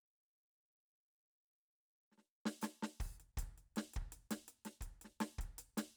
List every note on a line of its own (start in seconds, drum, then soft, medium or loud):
2.11 snare soft
2.18 snare soft
2.45 snare medium
2.61 snare soft
2.61 hi-hat pedal medium
2.82 snare soft
3.00 kick soft
3.00 open hi-hat soft
3.20 closed hi-hat soft
3.37 kick soft
3.37 closed hi-hat medium
3.58 closed hi-hat soft
3.76 snare medium
3.76 closed hi-hat soft
3.93 kick soft
3.93 closed hi-hat soft
4.12 closed hi-hat soft
4.30 snare soft
4.30 closed hi-hat medium
4.48 closed hi-hat soft
4.65 snare soft
4.65 closed hi-hat soft
4.80 kick soft
4.80 closed hi-hat soft
5.01 snare soft
5.01 closed hi-hat soft
5.20 snare medium
5.20 closed hi-hat soft
5.38 kick soft
5.38 closed hi-hat soft
5.58 closed hi-hat medium
5.77 snare medium
5.77 closed hi-hat medium